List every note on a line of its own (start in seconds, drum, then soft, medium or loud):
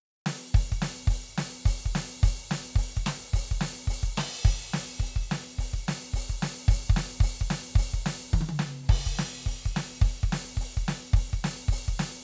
0.26 open hi-hat loud
0.26 snare loud
0.54 open hi-hat loud
0.54 kick loud
0.72 kick medium
0.82 open hi-hat loud
0.82 snare loud
1.07 open hi-hat loud
1.07 kick loud
1.38 open hi-hat loud
1.38 snare loud
1.65 open hi-hat loud
1.65 kick loud
1.86 kick medium
1.95 open hi-hat loud
1.95 snare loud
2.23 open hi-hat loud
2.23 kick loud
2.51 open hi-hat loud
2.51 snare loud
2.76 open hi-hat loud
2.76 kick loud
2.97 kick medium
3.06 open hi-hat loud
3.06 snare loud
3.33 open hi-hat loud
3.33 kick loud
3.51 kick medium
3.61 open hi-hat loud
3.61 snare loud
3.87 open hi-hat loud
3.87 kick medium
4.03 kick medium
4.17 snare loud
4.17 crash loud
4.45 open hi-hat loud
4.45 kick loud
4.74 open hi-hat loud
4.74 snare loud
5.00 open hi-hat medium
5.00 kick medium
5.16 kick medium
5.31 open hi-hat loud
5.31 snare loud
5.59 open hi-hat loud
5.59 kick medium
5.73 kick medium
5.88 open hi-hat loud
5.88 snare loud
6.14 open hi-hat loud
6.14 kick medium
6.29 kick medium
6.42 open hi-hat loud
6.42 snare loud
6.68 open hi-hat loud
6.68 kick loud
6.90 kick loud
6.96 open hi-hat loud
6.96 snare loud
7.20 open hi-hat loud
7.20 kick loud
7.41 kick medium
7.50 open hi-hat loud
7.50 snare loud
7.75 open hi-hat loud
7.75 kick loud
7.94 kick medium
8.06 open hi-hat loud
8.06 snare loud
8.33 kick loud
8.33 high tom loud
8.41 high tom loud
8.49 high tom loud
8.59 snare loud
8.85 snare soft
8.89 kick loud
8.89 crash loud
9.06 kick medium
9.19 open hi-hat loud
9.19 snare loud
9.46 open hi-hat medium
9.46 kick medium
9.65 kick medium
9.76 open hi-hat loud
9.76 snare loud
10.02 open hi-hat loud
10.02 kick loud
10.23 kick medium
10.32 open hi-hat loud
10.32 snare loud
10.57 open hi-hat loud
10.57 kick medium
10.77 kick medium
10.88 open hi-hat loud
10.88 snare loud
11.13 open hi-hat loud
11.13 kick loud
11.33 kick medium
11.44 open hi-hat loud
11.44 snare loud
11.68 open hi-hat loud
11.68 kick loud
11.88 kick medium
11.99 open hi-hat loud
11.99 snare loud